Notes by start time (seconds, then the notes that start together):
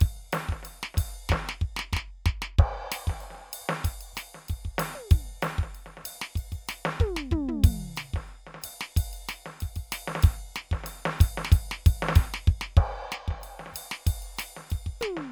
0.01 kick, ride
0.33 snare, hi-hat pedal, ride
0.49 kick, snare
0.63 snare, hi-hat pedal, ride
0.83 snare
0.95 kick, snare, ride
1.30 kick, snare, hi-hat pedal
1.32 snare
1.49 snare
1.62 kick
1.77 snare
1.80 snare
1.93 kick, snare
1.97 snare
2.26 kick, snare
2.42 snare
2.59 kick, crash
2.92 snare, hi-hat pedal, ride
3.08 kick, snare
3.21 hi-hat pedal, ride
3.31 snare
3.35 snare
3.41 snare
3.52 hi-hat pedal, ride
3.61 kick
3.69 snare
3.85 kick, ride
4.01 ride
4.13 kick, hi-hat pedal
4.17 snare, ride
4.35 snare
4.49 kick, ride
4.65 kick
4.79 snare, hi-hat pedal, ride
4.95 high tom
5.11 kick, ride
5.43 snare, hi-hat pedal, ride
5.59 kick
5.64 snare
5.75 ride
5.86 snare
5.97 snare
6.02 kick, snare, hi-hat pedal
6.06 ride
6.22 snare
6.36 kick, ride
6.53 kick, ride
6.68 snare, hi-hat pedal, ride
6.86 snare
7.01 kick, mid tom
7.17 snare
7.32 kick, floor tom
7.48 floor tom
7.64 kick, ride
7.96 snare, hi-hat pedal, ride
8.14 kick, snare
8.27 hi-hat pedal
8.47 snare
8.55 snare
8.62 kick, hi-hat pedal, ride
8.81 snare
8.97 kick, ride
9.13 ride
9.28 kick, snare, hi-hat pedal, ride
9.46 snare
9.61 kick, ride
9.76 kick, ride bell
9.92 snare, hi-hat pedal, ride
10.08 snare
10.16 snare
10.23 kick, ride
10.32 hi-hat pedal
10.56 snare, hi-hat pedal
10.72 kick, snare
10.84 snare, hi-hat pedal, ride
11.06 snare
11.18 kick, hi-hat pedal, ride
11.38 snare
11.45 snare
11.52 kick, ride
11.72 snare
11.87 kick, ride
12.03 snare
12.09 snare
12.16 kick, ride
12.34 snare
12.48 kick, snare
12.62 snare
12.77 kick, crash
13.12 snare, hi-hat pedal
13.28 kick, snare
13.41 hi-hat pedal, ride
13.60 snare
13.66 snare
13.73 kick, hi-hat pedal, ride
13.92 snare
14.07 kick, ride
14.23 ride
14.37 kick, snare, hi-hat pedal, ride
14.57 snare
14.71 kick, ride
14.87 kick
15.01 snare, hi-hat pedal, mid tom
15.17 snare